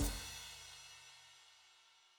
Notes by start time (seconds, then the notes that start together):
0.01 kick, hi-hat pedal, crash
0.09 kick